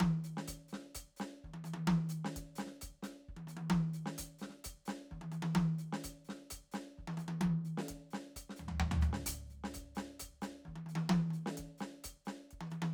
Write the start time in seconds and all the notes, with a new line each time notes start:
0.01 kick, high tom
0.24 hi-hat pedal, high tom
0.37 snare
0.48 closed hi-hat, kick
0.69 hi-hat pedal
0.73 snare
0.84 snare
0.95 closed hi-hat, kick
1.17 snare, hi-hat pedal
1.44 kick, high tom
1.54 high tom
1.64 hi-hat pedal, high tom
1.74 high tom
1.88 kick, high tom
2.09 hi-hat pedal
2.25 snare
2.36 kick, closed hi-hat
2.56 snare, hi-hat pedal
2.67 snare
2.82 closed hi-hat, kick
3.03 snare, hi-hat pedal
3.29 kick
3.37 high tom
3.47 hi-hat pedal, high tom
3.57 high tom
3.70 kick, high tom
3.94 hi-hat pedal
4.06 snare
4.18 closed hi-hat, kick
4.39 snare, hi-hat pedal
4.50 snare
4.64 closed hi-hat, kick
4.86 snare, hi-hat pedal
5.11 kick, high tom
5.32 hi-hat pedal, high tom
5.43 high tom
5.55 kick, high tom
5.79 hi-hat pedal
5.93 snare
6.04 closed hi-hat, kick
6.25 hi-hat pedal
6.29 snare
6.51 closed hi-hat, kick
6.72 snare, hi-hat pedal
6.98 kick, high tom
7.08 high tom
7.18 hi-hat pedal, high tom
7.28 high tom
7.41 kick, high tom
7.65 hi-hat pedal
7.78 snare
7.89 kick, closed hi-hat
8.11 snare, hi-hat pedal
8.36 closed hi-hat, kick
8.50 snare
8.56 floor tom, hi-hat pedal
8.69 floor tom
8.80 kick, floor tom
8.92 floor tom
9.02 floor tom, hi-hat pedal
9.13 snare
9.26 closed hi-hat, kick
9.47 hi-hat pedal, open hi-hat
9.64 snare
9.74 closed hi-hat, kick
9.95 snare, hi-hat pedal
10.20 closed hi-hat, kick
10.42 snare, hi-hat pedal
10.65 kick, high tom
10.76 high tom
10.86 hi-hat pedal, high tom
10.96 high tom
11.10 kick, high tom
11.31 hi-hat pedal, high tom
11.46 snare
11.57 kick, closed hi-hat
11.78 snare, hi-hat pedal
11.92 snare
12.04 closed hi-hat, kick
12.25 snare, hi-hat pedal
12.37 cross-stick
12.51 kick, closed hi-hat
12.61 high tom
12.71 hi-hat pedal, high tom
12.82 high tom